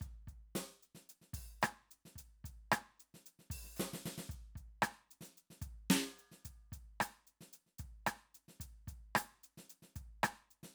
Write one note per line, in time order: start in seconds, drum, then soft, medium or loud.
0.01 kick soft
0.01 closed hi-hat soft
0.27 kick soft
0.27 closed hi-hat soft
0.55 snare medium
0.55 closed hi-hat medium
0.83 closed hi-hat soft
0.95 snare soft
1.09 closed hi-hat medium
1.22 snare soft
1.34 kick soft
1.34 open hi-hat medium
1.62 cross-stick medium
1.62 closed hi-hat medium
1.62 hi-hat pedal medium
1.91 closed hi-hat soft
2.05 snare soft
2.16 kick soft
2.16 closed hi-hat medium
2.44 kick soft
2.44 closed hi-hat medium
2.72 cross-stick medium
2.72 closed hi-hat medium
3.00 closed hi-hat soft
3.14 snare soft
3.26 closed hi-hat medium
3.39 snare soft
3.50 kick soft
3.50 open hi-hat medium
3.65 snare soft
3.76 snare medium
3.76 hi-hat pedal medium
3.93 snare medium
4.06 snare medium
4.18 snare medium
4.29 kick soft
4.29 closed hi-hat soft
4.56 kick soft
4.56 closed hi-hat soft
4.82 cross-stick medium
4.82 closed hi-hat medium
5.11 closed hi-hat soft
5.21 snare soft
5.21 closed hi-hat soft
5.37 closed hi-hat soft
5.50 snare soft
5.62 kick soft
5.62 closed hi-hat medium
5.90 snare medium
5.90 closed hi-hat medium
5.97 snare soft
6.19 closed hi-hat soft
6.32 snare soft
6.45 kick soft
6.45 closed hi-hat medium
6.72 kick soft
6.72 closed hi-hat medium
7.00 closed hi-hat medium
7.00 cross-stick medium
7.27 closed hi-hat soft
7.41 snare soft
7.53 closed hi-hat medium
7.66 snare soft
7.78 kick soft
7.78 closed hi-hat medium
8.07 cross-stick medium
8.07 closed hi-hat medium
8.34 closed hi-hat soft
8.48 snare soft
8.60 kick soft
8.60 closed hi-hat medium
8.87 kick soft
8.87 closed hi-hat medium
9.15 closed hi-hat medium
9.15 cross-stick medium
9.43 closed hi-hat soft
9.58 snare soft
9.70 closed hi-hat medium
9.82 snare soft
9.96 kick soft
9.96 closed hi-hat medium
10.23 cross-stick medium
10.23 closed hi-hat medium
10.51 closed hi-hat soft
10.63 snare soft